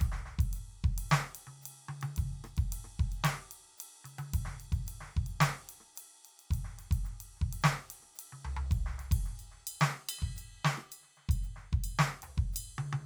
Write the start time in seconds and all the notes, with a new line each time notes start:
0.01 kick, hi-hat pedal, ride
0.13 snare
0.26 snare
0.40 kick, ride
0.54 hi-hat pedal, ride
0.85 kick
0.99 ride
1.10 snare, hi-hat pedal
1.36 ride
1.48 high tom
1.63 hi-hat pedal, ride
1.89 high tom
2.02 high tom, ride
2.17 kick, hi-hat pedal, ride
2.45 cross-stick, ride
2.58 kick, ride
2.73 hi-hat pedal, ride
2.85 cross-stick
3.00 kick
3.13 ride
3.25 snare, hi-hat pedal, ride
3.52 ride
3.78 hi-hat pedal, ride
4.05 high tom, ride
4.19 high tom, ride
4.34 kick, hi-hat pedal, ride
4.46 snare
4.61 ride
4.73 kick, ride
4.87 hi-hat pedal, ride
5.01 snare
5.12 hi-hat pedal
5.17 kick
5.27 ride
5.41 snare, hi-hat pedal, ride
5.70 ride
5.81 cross-stick
5.96 hi-hat pedal, ride
6.26 ride
6.40 ride
6.51 kick, hi-hat pedal, ride
6.65 snare
6.79 snare, ride
6.92 kick, ride
7.06 snare, hi-hat pedal
7.21 ride
7.37 snare
7.42 kick
7.54 ride
7.62 snare, hi-hat pedal
7.91 ride
8.03 cross-stick
8.16 hi-hat pedal
8.20 ride
8.33 high tom
8.41 hi-hat pedal
8.45 floor tom
8.57 floor tom
8.71 kick, hi-hat pedal, ride
8.87 snare
8.99 snare, ride
9.12 kick, ride
9.25 snare, hi-hat pedal
9.40 ride bell
9.52 snare
9.68 ride bell
9.80 snare, hi-hat pedal
10.10 ride bell
10.19 kick, snare
10.37 hi-hat pedal, ride bell
10.65 snare
10.78 cross-stick
10.92 hi-hat pedal, ride bell
11.04 snare
11.16 snare, hi-hat pedal
11.30 kick, ride bell
11.44 hi-hat pedal
11.57 snare
11.74 kick
11.85 ride bell
11.99 snare, hi-hat pedal
12.23 cross-stick, ride, floor tom
12.38 kick
12.54 hi-hat pedal, ride bell
12.79 high tom
12.94 high tom